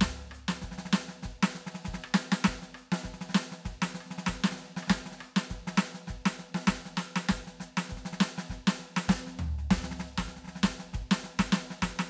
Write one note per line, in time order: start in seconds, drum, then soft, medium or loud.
0.01 kick soft
0.01 snare loud
0.20 snare soft
0.31 cross-stick medium
0.31 hi-hat pedal medium
0.48 snare loud
0.62 kick soft
0.62 snare soft
0.72 snare soft
0.78 snare medium
0.85 snare medium
0.93 snare loud
0.93 hi-hat pedal soft
1.09 snare soft
1.23 kick soft
1.23 snare medium
1.43 snare loud
1.53 snare soft
1.53 hi-hat pedal soft
1.67 snare medium
1.75 snare medium
1.85 kick soft
1.85 snare medium
1.94 snare medium
2.04 cross-stick medium
2.14 snare loud
2.14 hi-hat pedal soft
2.32 snare loud
2.44 kick soft
2.44 snare loud
2.62 snare soft
2.75 cross-stick medium
2.75 hi-hat pedal soft
2.92 snare loud
3.04 kick soft
3.04 snare soft
3.14 snare soft
3.21 snare medium
3.29 snare medium
3.35 snare loud
3.35 hi-hat pedal soft
3.52 snare medium
3.65 kick soft
3.65 snare medium
3.71 kick soft
3.82 snare loud
3.94 snare medium
3.94 hi-hat pedal medium
4.01 cross-stick medium
4.06 snare soft
4.11 snare medium
4.18 snare medium
4.27 kick soft
4.27 snare loud
4.44 snare loud
4.48 cross-stick medium
4.48 snare medium
4.56 snare soft
4.56 hi-hat pedal medium
4.59 snare soft
4.62 snare soft
4.65 snare soft
4.67 snare soft
4.70 snare soft
4.77 snare medium
4.83 cross-stick medium
4.88 kick soft
4.88 snare soft
4.90 snare loud
5.06 snare medium
5.12 snare soft
5.17 cross-stick medium
5.17 snare soft
5.22 hi-hat pedal soft
5.36 snare loud
5.50 kick soft
5.50 snare soft
5.67 snare medium
5.78 snare loud
5.78 hi-hat pedal soft
5.94 snare soft
6.08 kick soft
6.08 snare medium
6.26 snare loud
6.38 snare soft
6.38 hi-hat pedal soft
6.55 snare medium
6.67 kick soft
6.67 snare loud
6.86 snare soft
6.97 snare loud
6.97 hi-hat pedal medium
7.16 snare loud
7.29 kick soft
7.29 snare loud
7.47 snare soft
7.60 kick soft
7.60 snare medium
7.60 hi-hat pedal loud
7.77 snare loud
7.89 kick soft
7.89 snare soft
7.97 snare soft
8.05 snare medium
8.13 snare medium
8.19 kick soft
8.19 snare loud
8.19 hi-hat pedal medium
8.38 snare medium
8.50 kick soft
8.50 snare soft
8.67 snare loud
8.78 snare soft
8.78 hi-hat pedal medium
8.97 snare loud
9.09 kick soft
9.09 snare loud
9.14 kick soft
9.27 snare soft
9.39 floor tom loud
9.39 hi-hat pedal soft
9.58 snare soft
9.71 kick medium
9.71 snare loud
9.78 kick soft
9.82 kick soft
9.82 snare medium
9.91 kick soft
9.91 snare medium
9.99 snare medium
9.99 hi-hat pedal medium
10.18 kick soft
10.18 snare medium
10.28 snare soft
10.36 snare soft
10.44 snare soft
10.48 snare medium
10.56 snare soft
10.63 kick soft
10.63 snare loud
10.63 hi-hat pedal medium
10.79 snare soft
10.93 kick soft
10.93 snare soft
11.01 kick soft
11.04 kick soft
11.11 snare loud
11.22 snare soft
11.22 hi-hat pedal soft
11.39 kick soft
11.39 snare loud
11.52 snare loud
11.57 snare medium
11.71 snare medium
11.82 kick soft
11.82 snare loud
11.82 hi-hat pedal soft
11.99 snare loud